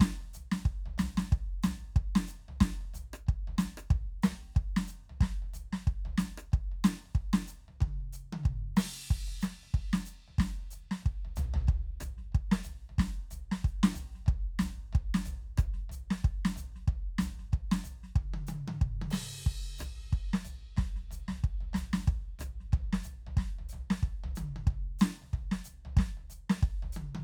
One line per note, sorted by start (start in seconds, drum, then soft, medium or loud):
0.01 kick medium
0.01 snare loud
0.22 floor tom soft
0.34 kick soft
0.34 floor tom soft
0.34 hi-hat pedal medium
0.52 snare medium
0.66 kick medium
0.66 floor tom soft
0.87 floor tom medium
0.99 snare medium
0.99 floor tom medium
0.99 hi-hat pedal medium
1.18 snare medium
1.32 kick loud
1.32 floor tom medium
1.64 snare loud
1.64 floor tom medium
1.64 hi-hat pedal medium
1.97 kick loud
1.97 floor tom soft
2.16 snare loud
2.28 floor tom soft
2.28 hi-hat pedal medium
2.49 floor tom medium
2.61 kick loud
2.61 snare loud
2.82 floor tom soft
2.95 floor tom medium
2.95 hi-hat pedal medium
3.14 cross-stick medium
3.28 kick medium
3.28 floor tom soft
3.48 floor tom medium
3.59 snare loud
3.59 hi-hat pedal medium
3.78 cross-stick medium
3.91 kick loud
3.91 floor tom medium
4.23 snare loud
4.23 floor tom medium
4.23 hi-hat pedal medium
4.45 snare soft
4.56 kick medium
4.56 floor tom soft
4.77 snare loud
4.88 floor tom soft
4.88 hi-hat pedal medium
5.10 floor tom medium
5.21 kick loud
5.21 snare loud
5.43 floor tom soft
5.54 kick soft
5.54 floor tom medium
5.54 hi-hat pedal medium
5.74 snare medium
5.87 kick medium
5.87 floor tom soft
6.06 floor tom medium
6.19 snare loud
6.19 hi-hat pedal medium
6.38 cross-stick medium
6.53 kick loud
6.53 floor tom soft
6.72 floor tom soft
6.85 snare loud
6.85 hi-hat pedal medium
7.06 floor tom soft
7.16 kick medium
7.16 floor tom soft
7.34 snare loud
7.48 floor tom soft
7.48 hi-hat pedal medium
7.69 floor tom soft
7.81 kick medium
7.81 high tom loud
8.01 floor tom soft
8.14 floor tom soft
8.14 hi-hat pedal medium
8.33 high tom loud
8.44 kick medium
8.44 floor tom soft
8.77 snare loud
8.77 hi-hat pedal medium
8.77 crash loud
9.11 kick medium
9.11 floor tom soft
9.29 floor tom soft
9.42 snare loud
9.42 hi-hat pedal medium
9.64 floor tom soft
9.75 kick medium
9.75 floor tom soft
9.94 snare loud
10.06 hi-hat pedal medium
10.29 floor tom soft
10.39 kick medium
10.39 snare medium
10.60 floor tom soft
10.71 floor tom soft
10.71 hi-hat pedal medium
10.92 snare medium
11.03 kick medium
11.03 floor tom soft
11.26 floor tom medium
11.37 floor tom loud
11.37 hi-hat pedal medium
11.55 floor tom loud
11.68 kick medium
11.68 floor tom medium
12.01 cross-stick medium
12.01 floor tom medium
12.01 hi-hat pedal medium
12.19 snare soft
12.33 kick medium
12.33 floor tom soft
12.52 snare loud
12.64 floor tom medium
12.64 hi-hat pedal medium
12.90 floor tom soft
12.99 kick medium
12.99 snare medium
12.99 floor tom medium
12.99 hi-hat pedal soft
13.31 kick soft
13.31 floor tom medium
13.31 hi-hat pedal medium
13.52 snare loud
13.64 kick medium
13.64 floor tom soft
13.68 hi-hat pedal soft
13.84 snare loud
13.95 floor tom medium
13.95 hi-hat pedal medium
14.16 snare soft
14.27 kick loud
14.27 floor tom medium
14.60 snare loud
14.60 floor tom medium
14.60 hi-hat pedal medium
14.94 kick medium
14.94 floor tom medium
15.15 snare loud
15.26 floor tom medium
15.26 hi-hat pedal medium
15.58 kick medium
15.58 cross-stick medium
15.58 floor tom medium
15.74 snare soft
15.90 floor tom medium
15.90 hi-hat pedal medium
16.11 snare loud
16.24 kick medium
16.24 floor tom soft
16.46 snare loud
16.57 floor tom medium
16.57 hi-hat pedal medium
16.76 snare soft
16.88 kick medium
16.88 floor tom medium
17.19 snare medium
17.19 floor tom medium
17.19 hi-hat pedal medium
17.40 snare soft
17.53 kick medium
17.53 floor tom medium
17.72 snare loud
17.85 floor tom medium
17.85 hi-hat pedal medium
18.04 snare soft
18.16 kick medium
18.16 high tom medium
18.35 high tom loud
18.48 hi-hat pedal medium
18.48 high tom loud
18.69 high tom loud
18.82 kick medium
19.02 high tom loud
19.11 snare loud
19.11 hi-hat pedal medium
19.11 crash loud
19.47 kick medium
19.47 floor tom soft
19.79 cross-stick medium
19.79 floor tom medium
19.79 hi-hat pedal medium
20.13 kick medium
20.13 floor tom soft
20.34 snare loud
20.45 floor tom medium
20.45 hi-hat pedal medium
20.77 kick medium
20.77 snare medium
20.77 floor tom medium
20.97 snare soft
21.12 floor tom medium
21.12 hi-hat pedal medium
21.29 snare medium
21.29 floor tom medium
21.45 kick medium
21.61 floor tom medium
21.74 snare loud
21.74 floor tom medium
21.74 hi-hat pedal medium
21.94 snare medium
22.08 kick loud
22.08 floor tom medium
22.40 cross-stick medium
22.40 floor tom medium
22.40 hi-hat pedal medium
22.61 snare soft
22.73 kick medium
22.73 floor tom medium
22.94 snare loud
23.04 floor tom medium
23.04 hi-hat pedal medium
23.27 floor tom medium
23.38 kick medium
23.38 snare medium
23.59 floor tom medium
23.70 floor tom medium
23.70 hi-hat pedal medium
23.91 snare loud
24.04 kick medium
24.04 floor tom medium
24.25 floor tom medium
24.36 hi-hat pedal medium
24.36 high tom loud
24.57 high tom medium
24.68 kick medium
24.68 floor tom soft
25.00 snare loud
25.00 hi-hat pedal medium
25.23 floor tom soft
25.34 kick medium
25.34 floor tom medium
25.52 snare loud
25.65 kick soft
25.65 floor tom soft
25.65 hi-hat pedal medium
25.86 floor tom medium
25.97 kick loud
25.97 snare loud
26.18 floor tom soft
26.31 floor tom soft
26.31 hi-hat pedal medium
26.50 snare loud
26.63 kick loud
26.63 floor tom soft
26.83 floor tom medium
26.93 hi-hat pedal medium
26.97 high tom loud
27.16 high tom loud